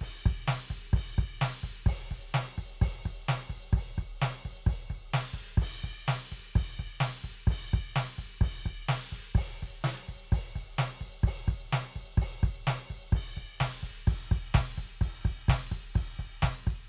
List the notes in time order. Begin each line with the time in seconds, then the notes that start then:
0.01 kick, crash
0.26 kick
0.48 snare, crash
0.70 kick
0.93 kick, crash
1.18 kick
1.41 snare, crash
1.63 kick
1.80 kick
1.86 open hi-hat, kick
2.11 kick
2.34 open hi-hat, snare
2.58 kick
2.81 open hi-hat, kick
3.05 kick
3.28 open hi-hat, snare
3.50 kick
3.73 open hi-hat, kick
3.98 kick
4.22 open hi-hat, snare
4.45 kick
4.66 open hi-hat, kick
4.90 kick
5.13 snare, crash
5.33 kick
5.57 kick, crash
5.84 kick
6.08 snare, crash
6.32 kick
6.55 kick, crash
6.79 kick
7.00 snare, crash
7.08 snare
7.24 kick
7.47 kick, crash
7.73 kick
7.96 snare, crash
8.18 kick
8.41 kick, crash
8.66 kick
8.88 snare, crash
9.12 kick
9.35 open hi-hat, kick
9.62 kick
9.84 open hi-hat, snare
10.08 kick
10.28 cross-stick
10.32 open hi-hat, kick
10.55 kick
10.78 open hi-hat, snare
11.01 kick
11.23 open hi-hat, kick
11.48 kick
11.72 open hi-hat, snare
11.96 kick
12.17 open hi-hat, kick
12.43 kick
12.67 open hi-hat, snare
12.90 kick
13.12 kick, crash
13.37 kick
13.60 kick, snare, crash
13.83 kick
14.07 kick, crash
14.31 kick
14.54 kick, snare, crash
14.78 kick
15.01 kick, crash
15.25 kick
15.48 kick, snare, crash
15.71 kick
15.94 kick, crash
16.19 kick
16.42 kick, snare, crash
16.67 kick